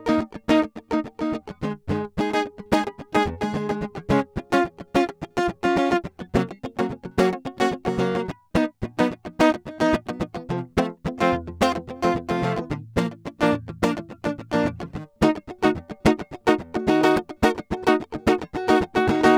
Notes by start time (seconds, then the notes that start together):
0.07 A#3 D#4 A#4
0.50 A#3 D#4
0.94 A3 D#4
1.23 A#3 D#4
1.64 G#3
1.92 G#3 D#4
2.19 G#3 D#4 G#4
2.35 D#4 G#4
2.73 G#3 D#4 G#4
3.16 G#3 D#4 G#4
3.42 G#3 G#4
3.56 G#3
3.71 G#3 G#4
4.11 G#3 C#4
4.54 C#4 F4
4.96 C#4 F4
5.39 F4
5.65 C#4 F4
5.78 C#4 F4
5.93 F4
6.36 F#3 A#3
6.80 F#3 A#3 C#4
7.20 F#3 A#3 C#4 F#4
7.61 A#3 C#4 F#4
7.86 F#3 A#3 F#4
8.00 F#3 A#3
8.18 A#3
8.56 B3 D#4
9.00 F#3 B3 D#4
9.41 B3 D#4
9.82 B3 D#4
10.51 F3
10.78 F3 A3 C4 F4
11.08 F4
11.22 F3 A3 C4 F4
11.50 F3
11.63 A3 C4 F4
12.04 F3 A3 C4 F4
12.30 F3 A3 C4 F4
12.45 F3 A3
12.72 D3
12.98 F3 A#3
13.43 F3 A#3 D4
13.84 F3 A#3 D4
14.26 D4
14.54 F3 A#3 D4
15.24 D#4 F#4
15.64 D#4 F#4
16.07 D#4 F#4
16.49 D#4 F#4
16.76 A3 F#4
16.89 A3 D#4 F#4 A#4
17.05 A#3 D#4 F#4 A#4
17.44 D#4 F#4 A#4
17.75 F#4
17.89 D#4 F#4
18.29 D#4 F#4 A#4
18.57 F#4
18.69 D#4 F#4 A#4
18.97 A3 D#4 F#4
19.09 A#3 D#4 F#4
19.25 A#3 D#4 F#4 A#4